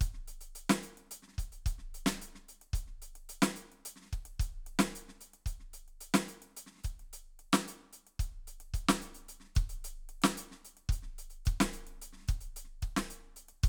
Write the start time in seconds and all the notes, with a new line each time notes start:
0.01 closed hi-hat, kick
0.14 snare
0.28 closed hi-hat, snare
0.41 closed hi-hat
0.55 closed hi-hat
0.70 snare
0.83 closed hi-hat
0.97 closed hi-hat
1.11 closed hi-hat
1.22 snare
1.28 snare
1.32 snare
1.37 closed hi-hat, kick, snare
1.42 snare
1.52 closed hi-hat
1.66 closed hi-hat, kick
1.78 snare
1.94 closed hi-hat
2.06 closed hi-hat, snare
2.20 closed hi-hat, snare
2.35 snare
2.49 closed hi-hat
2.61 closed hi-hat
2.73 closed hi-hat, kick
2.87 snare
3.02 closed hi-hat
3.15 closed hi-hat
3.29 closed hi-hat
3.42 snare
3.56 closed hi-hat
3.72 closed hi-hat
3.85 closed hi-hat
3.96 snare
4.00 snare
4.02 snare
4.05 snare
4.13 kick, closed hi-hat
4.25 closed hi-hat
4.40 closed hi-hat, kick
4.66 closed hi-hat
4.79 snare, closed hi-hat
4.95 closed hi-hat
5.08 snare
5.13 snare
5.19 closed hi-hat, snare
5.22 snare
5.26 snare
5.31 snare, closed hi-hat
5.46 closed hi-hat, kick
5.60 snare
5.71 snare
5.73 closed hi-hat, snare
5.88 closed hi-hat
6.01 closed hi-hat
6.14 snare
6.28 closed hi-hat
6.42 closed hi-hat
6.57 closed hi-hat
6.66 snare
6.71 snare
6.75 snare
6.77 snare
6.83 closed hi-hat, kick, snare
6.87 snare
6.91 snare
6.94 snare
6.97 snare, closed hi-hat
7.00 snare
7.04 snare
7.13 closed hi-hat
7.39 closed hi-hat
7.53 snare, closed hi-hat
7.68 closed hi-hat
7.93 closed hi-hat
8.07 closed hi-hat
8.19 closed hi-hat, kick
8.32 snare
8.47 closed hi-hat, snare
8.60 closed hi-hat
8.74 closed hi-hat, kick
8.89 snare
9.01 closed hi-hat
9.14 closed hi-hat
9.29 closed hi-hat
9.40 snare
9.44 snare
9.55 closed hi-hat, kick
9.69 closed hi-hat, snare
9.84 closed hi-hat
10.09 closed hi-hat
10.22 snare, closed hi-hat
10.37 closed hi-hat
10.51 snare
10.54 snare
10.65 closed hi-hat
10.77 closed hi-hat
10.89 closed hi-hat, kick
11.02 snare
11.06 snare
11.11 snare
11.14 snare
11.18 closed hi-hat
11.30 closed hi-hat
11.45 closed hi-hat, kick
11.60 snare
11.73 closed hi-hat
11.87 closed hi-hat
12.02 closed hi-hat
12.13 snare
12.16 snare
12.19 snare
12.21 snare
12.25 closed hi-hat, kick, snare
12.41 closed hi-hat
12.56 closed hi-hat
12.64 snare
12.82 kick, closed hi-hat
12.96 snare, closed hi-hat
13.10 closed hi-hat
13.19 snare
13.22 snare
13.36 closed hi-hat
13.49 closed hi-hat
13.63 closed hi-hat, kick